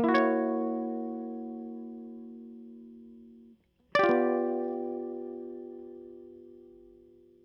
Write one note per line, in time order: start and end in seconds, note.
0.00 3.57 A#3
0.04 3.57 E4
0.09 3.55 F#4
0.15 2.52 C#5
3.96 6.17 D5
4.00 7.45 G4
4.04 7.45 F4
4.10 7.45 B3